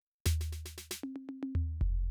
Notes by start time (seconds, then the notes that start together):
0.26 snare, floor tom
0.41 snare
0.52 snare
0.66 snare
0.78 snare
0.91 snare
1.03 high tom
1.16 high tom
1.29 high tom
1.43 high tom
1.55 floor tom
1.81 kick